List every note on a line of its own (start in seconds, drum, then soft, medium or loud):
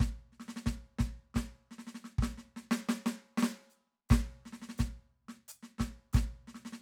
0.01 kick medium
0.01 snare medium
0.33 snare soft
0.40 snare soft
0.49 snare soft
0.57 snare medium
0.67 kick medium
0.67 snare medium
0.99 kick medium
0.99 snare medium
1.35 kick medium
1.35 snare soft
1.37 snare medium
1.72 snare soft
1.79 snare soft
1.88 snare soft
1.95 snare soft
2.05 snare soft
2.19 kick medium
2.19 snare soft
2.23 snare medium
2.38 snare soft
2.57 snare soft
2.72 snare loud
2.89 snare loud
3.07 snare medium
3.38 snare loud
3.43 snare loud
3.71 hi-hat pedal soft
4.10 kick loud
4.10 snare medium
4.10 hi-hat pedal soft
4.13 snare loud
4.46 snare soft
4.53 snare soft
4.62 snare soft
4.70 snare soft
4.79 kick medium
4.79 snare medium
4.79 hi-hat pedal medium
5.29 snare soft
5.49 hi-hat pedal medium
5.63 snare soft
5.79 kick soft
5.79 snare soft
5.79 snare medium
6.14 kick loud
6.14 snare soft
6.14 hi-hat pedal medium
6.16 snare medium
6.48 snare soft
6.55 snare soft
6.66 snare soft
6.73 snare soft